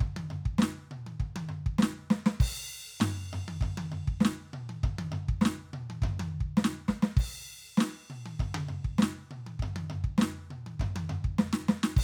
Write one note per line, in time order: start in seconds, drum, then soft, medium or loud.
0.01 kick loud
0.01 floor tom medium
0.17 high tom loud
0.31 floor tom medium
0.46 kick medium
0.59 snare loud
0.62 snare loud
0.92 mid tom medium
1.07 high tom medium
1.20 kick medium
1.20 floor tom medium
1.36 high tom loud
1.49 floor tom medium
1.67 kick medium
1.79 snare loud
1.83 snare loud
2.11 snare loud
2.27 snare loud
2.41 kick loud
2.41 crash loud
3.01 snare loud
3.01 floor tom loud
3.33 floor tom loud
3.49 high tom loud
3.61 kick loud
3.61 floor tom medium
3.78 high tom loud
3.92 floor tom medium
4.08 kick medium
4.21 snare loud
4.25 snare loud
4.54 mid tom medium
4.70 high tom medium
4.84 kick loud
4.84 floor tom medium
4.99 high tom loud
5.12 floor tom loud
5.29 kick loud
5.42 snare loud
5.46 snare loud
5.74 mid tom loud
5.91 high tom medium
6.03 kick loud
6.03 floor tom loud
6.20 high tom loud
6.41 kick medium
6.58 snare loud
6.65 snare loud
6.89 kick soft
6.89 snare loud
7.03 snare loud
7.17 kick loud
7.17 snare soft
7.17 crash loud
7.78 snare loud
7.78 hi-hat pedal soft
7.81 snare loud
8.11 mid tom medium
8.26 high tom medium
8.40 kick medium
8.40 floor tom medium
8.55 high tom loud
8.69 floor tom medium
8.85 kick medium
8.99 snare loud
9.03 snare loud
9.31 mid tom medium
9.47 high tom medium
9.60 kick medium
9.60 floor tom loud
9.77 high tom loud
9.90 floor tom medium
10.04 kick medium
10.19 snare loud
10.22 snare loud
10.51 mid tom medium
10.67 high tom medium
10.80 kick medium
10.80 floor tom loud
10.96 high tom loud
11.10 floor tom loud
11.25 kick medium
11.39 snare loud
11.53 snare loud
11.69 snare loud
11.84 snare loud
11.97 kick loud
11.97 crash loud